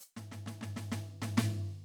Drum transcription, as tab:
HH |p-----------|
SD |-ggoooo-oo--|
FT |-oooooo-oo--|